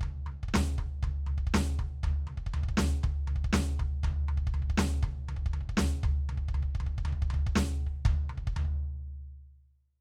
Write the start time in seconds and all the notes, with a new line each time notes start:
0.01 kick, floor tom
0.26 floor tom
0.43 kick
0.48 kick
0.54 snare, floor tom
0.78 kick, floor tom
1.03 kick, floor tom
1.26 floor tom
1.38 kick
1.47 kick
1.54 snare, floor tom
1.79 kick, floor tom
2.03 kick, floor tom
2.27 floor tom
2.37 kick
2.46 kick
2.54 floor tom
2.63 kick
2.69 kick
2.77 snare, floor tom
3.03 kick, floor tom
3.27 floor tom
3.36 kick
3.44 kick
3.53 snare, floor tom
3.79 kick, floor tom
4.03 kick, floor tom
4.28 floor tom
4.37 kick
4.47 kick
4.54 floor tom
4.62 kick
4.70 kick
4.78 snare, floor tom
5.03 kick, floor tom
5.29 floor tom
5.36 kick
5.46 kick
5.53 floor tom
5.61 kick
5.69 kick
5.77 snare, floor tom
6.03 kick, floor tom
6.29 floor tom
6.37 kick
6.48 kick
6.54 floor tom
6.62 kick
6.75 kick
6.80 floor tom
6.86 kick
6.98 kick
7.05 floor tom
7.12 kick
7.22 kick
7.30 kick, floor tom
7.47 kick
7.56 kick, snare, floor tom
7.87 kick
8.05 kick, floor tom
8.29 floor tom
8.38 kick
8.47 kick
8.56 floor tom
8.65 kick